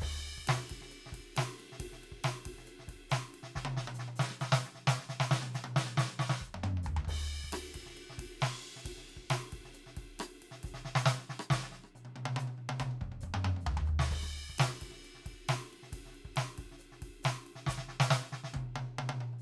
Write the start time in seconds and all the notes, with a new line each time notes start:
0.01 kick, hi-hat pedal, crash
0.16 kick, cross-stick
0.38 kick
0.43 kick
0.48 snare, hi-hat pedal, ride
0.55 snare
0.70 kick, ride
0.77 kick
0.82 snare
0.90 hi-hat pedal, ride
1.06 snare
1.12 kick, ride
1.19 kick
1.35 snare, hi-hat pedal, ride
1.60 ride
1.72 snare
1.80 kick, hi-hat pedal, ride
1.87 kick
1.93 snare
2.00 snare, ride
2.12 kick
2.17 kick
2.24 snare, hi-hat pedal, ride
2.46 kick, ride
2.52 kick
2.58 snare
2.66 hi-hat pedal, ride
2.79 snare
2.88 kick, ride
2.94 kick
3.10 snare, hi-hat pedal, ride
3.34 ride
3.43 snare
3.56 kick, snare, hi-hat pedal
3.63 kick, high tom
3.77 snare
3.87 high tom
3.94 hi-hat pedal
3.99 snare
4.08 high tom
4.16 snare, hi-hat pedal
4.31 cross-stick
4.40 snare, hi-hat pedal
4.52 snare
4.64 snare, hi-hat pedal
4.75 snare
4.87 snare, hi-hat pedal
4.99 snare
5.09 snare, hi-hat pedal
5.20 snare
5.31 snare, hi-hat pedal
5.43 high tom
5.54 snare, hi-hat pedal
5.64 high tom
5.76 snare, hi-hat pedal
5.86 high tom
5.98 snare, hi-hat pedal
6.09 cross-stick
6.19 snare, hi-hat pedal
6.30 snare
6.41 kick, hi-hat pedal
6.50 kick
6.54 mid tom
6.64 mid tom
6.77 mid tom
6.83 kick, floor tom, hi-hat pedal
6.91 kick
6.97 floor tom
7.05 kick, hi-hat pedal, crash, floor tom
7.21 kick
7.44 kick
7.53 cross-stick, hi-hat pedal, ride
7.74 kick, ride
7.81 kick
7.86 snare
7.95 hi-hat pedal, ride
8.10 snare
8.18 kick, ride
8.25 kick
8.41 snare, hi-hat pedal, ride
8.63 ride
8.76 snare
8.85 kick, hi-hat pedal, ride
8.92 kick
8.97 snare
9.04 snare
9.10 ride
9.17 kick
9.22 kick
9.30 snare, hi-hat pedal, ride
9.52 kick, ride
9.58 kick
9.65 snare
9.74 hi-hat pedal, ride
9.86 snare
9.97 kick, ride
10.04 kick
10.19 cross-stick, hi-hat pedal, ride
10.42 ride
10.51 snare
10.63 kick, hi-hat pedal, ride
10.72 kick, snare
10.85 snare
10.95 snare
11.06 snare, hi-hat pedal
11.17 snare
11.30 snare
11.39 cross-stick
11.50 kick, snare, hi-hat pedal
11.58 kick
11.63 snare
11.72 snare
11.84 cross-stick
11.95 hi-hat pedal, high tom
12.05 high tom
12.16 high tom
12.26 high tom
12.36 hi-hat pedal, high tom
12.47 high tom
12.58 high tom
12.69 high tom
12.79 kick, hi-hat pedal, high tom
12.87 kick, high tom
13.01 kick, mid tom
13.12 kick, mid tom
13.21 kick, hi-hat pedal, mid tom
13.34 mid tom
13.45 mid tom
13.56 mid tom
13.61 hi-hat pedal
13.67 floor tom
13.77 floor tom
13.86 kick, floor tom, hi-hat pedal
13.96 kick, snare
14.10 kick, hi-hat pedal, crash
14.23 kick, cross-stick
14.50 kick
14.55 kick, ride
14.60 snare, hi-hat pedal
14.68 snare
14.81 kick, ride
14.88 kick, snare
15.03 hi-hat pedal, ride
15.15 snare
15.22 kick, snare
15.26 ride
15.33 kick
15.48 snare, hi-hat pedal, ride
15.73 ride
15.83 snare
15.92 kick, hi-hat pedal, ride
16.00 kick
16.06 snare
16.11 snare, ride
16.25 kick
16.31 kick
16.36 snare, hi-hat pedal, ride
16.48 snare
16.58 kick, ride
16.65 kick
16.72 snare
16.79 hi-hat pedal, ride
16.92 snare
17.02 kick, ride
17.09 kick
17.23 snare, hi-hat pedal, ride
17.47 ride
17.56 snare
17.67 kick, snare, hi-hat pedal
17.75 kick, snare
17.88 snare
18.00 snare
18.11 snare
18.23 snare
18.32 snare
18.44 snare
18.54 kick, high tom
18.63 kick
18.76 high tom
18.99 high tom
19.09 high tom
19.21 high tom
19.33 high tom
19.39 hi-hat pedal